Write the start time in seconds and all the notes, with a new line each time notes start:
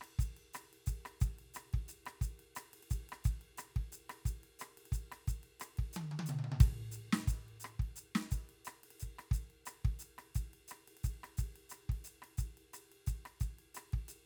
0.01 cross-stick, ride
0.19 kick, hi-hat pedal, ride
0.37 ride
0.53 cross-stick, hi-hat pedal, ride
0.73 ride
0.86 kick, hi-hat pedal, ride
1.05 cross-stick, ride
1.20 kick, hi-hat pedal, ride
1.39 ride
1.54 cross-stick, hi-hat pedal, ride
1.73 kick, ride
1.88 hi-hat pedal, ride
2.06 cross-stick, ride
2.21 kick, hi-hat pedal, ride
2.39 ride
2.55 cross-stick, hi-hat pedal, ride
2.73 ride
2.83 ride
2.90 kick, hi-hat pedal, ride
3.09 cross-stick, ride
3.24 kick, hi-hat pedal, ride
3.41 ride
3.57 cross-stick, hi-hat pedal, ride
3.76 kick, ride
3.92 hi-hat pedal, ride
4.09 cross-stick, ride
4.25 kick, hi-hat pedal, ride
4.43 ride
4.59 cross-stick, hi-hat pedal, ride
4.77 ride
4.85 ride
4.92 kick, hi-hat pedal, ride
5.12 cross-stick, ride
5.27 kick, hi-hat pedal, ride
5.43 ride
5.60 cross-stick, hi-hat pedal, ride
5.77 kick, ride
5.93 hi-hat pedal, high tom
6.11 high tom
6.19 high tom
6.26 hi-hat pedal, mid tom
6.39 mid tom
6.44 mid tom
6.52 mid tom
6.60 kick, hi-hat pedal, ride
6.91 hi-hat pedal
6.96 ride
7.13 snare
7.27 kick, hi-hat pedal, ride
7.48 ride
7.60 hi-hat pedal
7.64 cross-stick, ride
7.79 kick, ride
7.96 hi-hat pedal, ride
8.15 snare, ride
8.31 kick, hi-hat pedal, ride
8.49 ride
8.65 cross-stick, hi-hat pedal, ride
8.83 ride
8.90 ride
8.99 kick, hi-hat pedal, ride
9.19 cross-stick, ride
9.31 kick, hi-hat pedal, ride
9.50 ride
9.65 cross-stick, hi-hat pedal, ride
9.85 kick, ride
9.99 hi-hat pedal, ride
10.18 cross-stick, ride
10.35 kick, hi-hat pedal, ride
10.53 ride
10.68 cross-stick, hi-hat pedal, ride
10.88 ride
10.97 ride
11.03 kick, hi-hat pedal, ride
11.23 cross-stick, ride
11.37 kick, hi-hat pedal
11.41 ride
11.56 ride
11.69 cross-stick, hi-hat pedal
11.74 ride
11.89 kick, ride
12.04 hi-hat pedal, ride
12.22 cross-stick, ride
12.37 kick, hi-hat pedal, ride
12.57 ride
12.73 cross-stick, hi-hat pedal, ride
12.92 ride
13.06 kick, hi-hat pedal, ride
13.25 cross-stick, ride
13.40 kick, hi-hat pedal, ride
13.59 ride
13.74 cross-stick, hi-hat pedal, ride
13.92 kick, ride
14.08 hi-hat pedal, ride